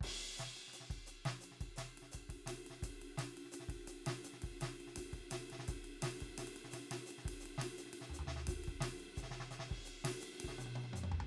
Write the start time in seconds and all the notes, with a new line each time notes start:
0.01 kick, ride
0.38 snare, hi-hat pedal, ride bell
0.57 ride bell
0.68 snare
0.74 hi-hat pedal, ride
0.81 snare
0.90 kick, ride bell
1.07 hi-hat pedal, ride bell
1.26 snare, ride
1.41 hi-hat pedal, ride bell
1.52 snare
1.61 kick, ride bell
1.76 snare, hi-hat pedal, ride bell
1.98 ride
2.02 snare
2.12 kick, hi-hat pedal, ride bell
2.29 kick, ride
2.47 snare, hi-hat pedal, ride
2.67 snare, ride
2.83 kick, hi-hat pedal, ride
3.02 ride
3.18 snare, hi-hat pedal, ride
3.37 ride
3.45 snare
3.52 hi-hat pedal, ride
3.60 snare
3.69 kick, ride
3.87 hi-hat pedal, ride
4.07 snare, ride
4.24 hi-hat pedal, ride
4.33 snare
4.42 kick, ride
4.61 snare, hi-hat pedal, ride
4.81 ride
4.87 snare
4.96 kick, hi-hat pedal, ride
5.13 kick, ride
5.31 snare, hi-hat pedal, ride
5.50 snare, ride
5.59 snare
5.68 kick, hi-hat pedal, ride
5.85 ride
6.02 snare, hi-hat pedal, ride
6.21 kick, ride
6.38 snare, hi-hat pedal, ride
6.48 ride
6.57 ride
6.64 snare
6.72 snare, hi-hat pedal, ride
6.91 snare, ride
7.07 hi-hat pedal
7.11 ride
7.18 snare
7.26 kick, ride
7.41 hi-hat pedal
7.46 ride
7.58 snare, ride
7.78 hi-hat pedal, ride
7.86 snare
7.93 ride
8.01 snare
8.10 floor tom
8.14 hi-hat pedal
8.19 floor tom
8.28 snare
8.37 snare
8.47 kick, hi-hat pedal, ride
8.64 kick, ride
8.81 snare, hi-hat pedal, ride
9.00 ride
9.09 snare
9.16 kick, hi-hat pedal, ride
9.23 snare
9.31 snare
9.40 snare
9.51 snare, hi-hat pedal
9.60 snare
9.69 kick, ride
9.85 hi-hat pedal, ride
10.05 snare, ride
10.21 hi-hat pedal, ride
10.33 snare
10.40 ride
10.45 kick, snare
10.59 hi-hat pedal, high tom
10.66 high tom
10.76 high tom
10.84 high tom
10.93 hi-hat pedal, mid tom
11.04 mid tom
11.12 floor tom
11.21 floor tom